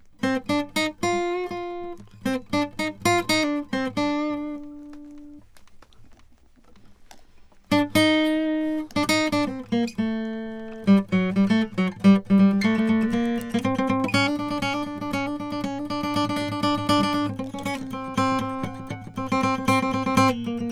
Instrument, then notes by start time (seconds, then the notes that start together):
acoustic guitar
0.24 C4
0.50 D4
0.76 D#4
1.03 F4
1.52 F4
2.26 C4
2.54 D4
2.79 D#4
3.06 F4
3.30 D#4
3.44 D4
3.73 C4
3.97 D4
7.72 D4
7.96 D#4
8.96 D4
9.09 D#4
9.33 D4
9.48 C4
9.73 A#3
9.99 A3
10.88 G3
11.13 F#3
11.37 G3
11.51 A3
11.78 F#3
12.05 G3
12.30 G3
12.40 G3
12.52 G3
12.65 A3
12.79 A3
12.90 A3
13.02 A#3
13.14 A#3
13.39 A#3
13.55 B3
13.65 C4
13.79 C4
13.90 C4
14.14 C#4
14.24 D4
14.40 D4
14.50 D4
14.63 C#4
14.74 D4
14.83 D4
15.02 D4
15.14 C#4
15.27 D4
15.41 D4
15.53 D4
15.65 C#4
15.79 D4
15.91 D4
16.05 D4
16.15 D4
16.30 D4
16.38 D4
16.53 D4
16.64 D4
16.76 D4
16.90 D4
17.02 D4
17.13 D4
17.40 C4
17.49 C#4
17.59 D4
17.67 C#4
17.75 C4
17.91 C4
18.18 C4
18.39 C4
18.65 C4
18.88 C4
19.18 C4
19.32 C4
19.45 C4
19.68 C4
19.78 C4
19.88 C4
19.96 C4
20.07 C4
20.18 C4
20.30 A#3
20.48 A#3
20.59 A#3